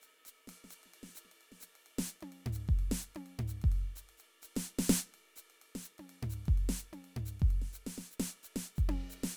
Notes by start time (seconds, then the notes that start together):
0.01 hi-hat pedal, ride
0.25 hi-hat pedal, ride
0.47 snare, ride
0.64 snare
0.69 hi-hat pedal, ride
0.83 snare, ride
0.93 ride
1.03 snare
1.08 snare
1.14 hi-hat pedal, ride
1.25 snare
1.31 ride
1.41 ride
1.52 snare
1.60 snare, hi-hat pedal, ride
1.75 ride
1.81 hi-hat pedal
1.86 ride
1.98 snare
2.06 hi-hat pedal, ride
2.21 high tom, ride
2.32 ride
2.46 floor tom
2.52 hi-hat pedal, ride
2.68 kick, ride
2.79 ride
2.91 snare
3.00 hi-hat pedal, ride
3.15 high tom, ride
3.26 ride
3.39 floor tom
3.47 hi-hat pedal, ride
3.61 kick, ride
3.95 hi-hat pedal, ride
4.09 ride
4.17 hi-hat pedal, ride
4.42 hi-hat pedal, ride
4.56 snare, ride
4.66 ride
4.79 snare
4.89 snare, hi-hat pedal, ride
5.03 ride
5.14 ride
5.36 hi-hat pedal, ride
5.50 ride
5.61 ride
5.75 snare
5.83 hi-hat pedal, ride
5.98 high tom, ride
6.09 ride
6.22 floor tom
6.29 hi-hat pedal
6.34 ride
6.45 kick, ride
6.57 ride
6.69 snare
6.77 hi-hat pedal, ride
6.93 high tom, ride
7.04 ride
7.16 floor tom
7.25 hi-hat pedal, ride
7.39 kick, ride
7.47 hi-hat pedal, ride
7.61 snare
7.73 hi-hat pedal, ride
7.86 snare, ride
7.97 snare, ride
8.10 hi-hat pedal
8.19 snare, ride
8.33 ride
8.43 hi-hat pedal, ride
8.56 snare
8.67 ride
8.75 kick, hi-hat pedal
8.80 ride
8.89 high tom, ride
9.09 hi-hat pedal
9.14 ride
9.23 snare, ride